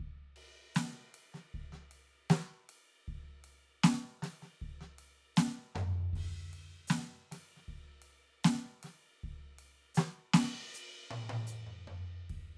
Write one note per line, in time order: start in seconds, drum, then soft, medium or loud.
0.01 kick soft
0.37 ride soft
0.76 snare medium
0.76 hi-hat pedal medium
0.92 snare soft
1.15 ride medium
1.35 snare soft
1.55 kick soft
1.73 snare soft
1.80 snare soft
1.92 ride soft
2.30 snare loud
2.30 hi-hat pedal medium
2.70 ride medium
3.09 kick soft
3.45 ride soft
3.84 snare loud
3.84 hi-hat pedal medium
4.23 snare medium
4.23 ride medium
4.43 snare soft
4.62 kick soft
4.82 snare soft
4.99 ride medium
5.37 snare loud
5.37 hi-hat pedal medium
5.76 snare soft
5.76 floor tom loud
6.14 kick soft
6.14 crash soft
6.54 ride soft
6.88 snare loud
6.88 hi-hat pedal medium
6.99 snare soft
7.32 snare soft
7.32 ride medium
7.57 snare soft
7.69 kick soft
8.03 ride soft
8.45 snare loud
8.45 hi-hat pedal medium
8.84 snare soft
8.84 ride medium
9.25 kick soft
9.59 ride medium
9.96 snare loud
9.96 hi-hat pedal medium
10.34 snare loud
10.34 ride medium
10.75 hi-hat pedal medium
11.12 mid tom medium
11.30 mid tom medium
11.48 floor tom soft
11.48 hi-hat pedal medium
11.67 floor tom soft
11.88 floor tom medium
12.30 kick soft
12.30 crash soft